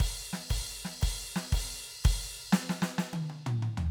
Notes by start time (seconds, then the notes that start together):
0.01 kick, crash
0.33 snare
0.50 kick, crash
0.85 snare
1.01 kick, crash
1.36 snare
1.52 kick, crash
2.04 kick, crash
2.53 snare
2.69 snare
2.82 snare
2.98 snare
3.13 high tom
3.30 high tom
3.46 mid tom
3.62 mid tom
3.77 floor tom